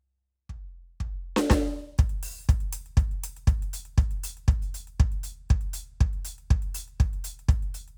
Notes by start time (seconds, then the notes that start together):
0.50 kick
1.01 kick
1.37 snare
1.50 kick, snare
1.98 kick, closed hi-hat
2.10 closed hi-hat
2.23 open hi-hat
2.44 hi-hat pedal
2.49 kick, closed hi-hat
2.61 closed hi-hat
2.73 closed hi-hat
2.86 closed hi-hat
2.97 kick, closed hi-hat
3.12 closed hi-hat
3.24 closed hi-hat
3.37 closed hi-hat
3.48 kick, closed hi-hat
3.63 closed hi-hat
3.74 closed hi-hat
3.86 closed hi-hat
3.98 closed hi-hat, kick
4.11 closed hi-hat
4.17 kick
4.24 closed hi-hat
4.37 closed hi-hat
4.48 kick, closed hi-hat
4.62 closed hi-hat
4.75 closed hi-hat
4.88 closed hi-hat
5.00 kick, closed hi-hat
5.12 closed hi-hat
5.24 closed hi-hat
5.38 closed hi-hat
5.50 kick, closed hi-hat
5.61 closed hi-hat
5.74 closed hi-hat
5.88 closed hi-hat
6.01 kick, closed hi-hat
6.13 closed hi-hat
6.25 closed hi-hat
6.38 closed hi-hat
6.51 kick, closed hi-hat
6.62 closed hi-hat
6.75 closed hi-hat
6.88 closed hi-hat
7.00 kick, closed hi-hat
7.14 closed hi-hat
7.24 closed hi-hat
7.39 closed hi-hat
7.49 kick, closed hi-hat
7.63 closed hi-hat
7.75 closed hi-hat
7.88 closed hi-hat